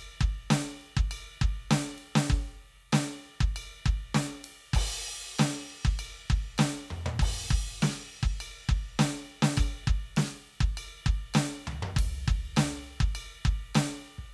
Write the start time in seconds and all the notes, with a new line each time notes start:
0.21 kick
0.51 snare, ride bell
0.97 kick
1.12 ride bell
1.42 kick, snare
1.72 snare, ride bell
1.99 ride
2.16 snare
2.31 kick
2.93 snare, ride bell
3.41 kick
3.57 ride bell
3.87 kick
4.15 snare, ride bell
4.45 ride
4.74 kick, ride bell, crash
5.40 snare, ride bell
5.86 kick
6.00 ride bell
6.31 kick
6.59 snare, ride bell
6.91 mid tom
7.07 high tom
7.20 kick, crash
7.51 kick, snare
7.83 snare, ride bell
8.24 kick
8.41 ride bell
8.70 kick, snare
9.00 snare, ride bell
9.43 snare
9.58 kick, ride bell
9.88 kick
10.17 snare, ride
10.61 kick
10.78 ride bell
11.07 kick, snare
11.35 snare, ride bell
11.68 floor tom
11.83 mid tom
11.97 kick, ride
12.29 kick, snare
12.57 snare, ride bell
13.01 kick, snare
13.16 ride bell
13.46 kick, snare
13.76 snare, ride bell
14.19 kick